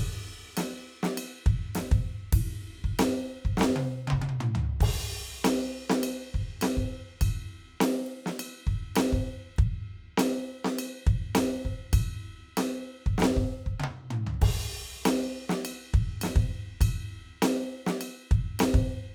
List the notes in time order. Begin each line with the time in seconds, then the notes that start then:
0.57 snare, ride bell
1.03 snare
1.17 ride bell
1.46 kick, snare
1.75 snare, ride bell
1.91 kick
2.32 kick, ride
2.84 kick
2.99 snare, ride bell
3.45 kick
3.57 snare
3.61 snare
3.76 high tom
4.07 high tom
4.10 kick, high tom
4.21 high tom
4.29 high tom
4.40 mid tom
4.55 floor tom
4.80 kick, crash
5.44 snare, ride bell
5.90 snare
6.03 ride bell
6.34 kick
6.61 snare, ride bell
6.77 kick
7.21 kick, ride bell
7.80 snare, ride
8.06 ride
8.26 snare
8.39 ride bell
8.67 kick
8.96 snare, ride bell
9.12 kick
9.56 kick, ride
9.61 snare
10.18 snare, ride bell
10.64 snare
10.79 ride bell
11.06 kick
11.35 snare, ride bell
11.65 kick
11.93 kick, ride bell
12.57 snare, ride bell
13.06 kick
13.18 snare
13.22 snare
13.36 kick
13.66 kick
13.80 high tom
13.84 high tom
14.10 mid tom
14.27 floor tom
14.34 floor tom
14.42 kick, crash
15.05 snare, ride bell
15.49 snare
15.65 ride bell
15.94 kick
16.21 snare, ride bell
16.36 kick
16.81 kick, ride bell
17.42 snare, ride bell
17.87 snare
18.01 ride bell
18.31 kick
18.59 snare, ride bell
18.74 kick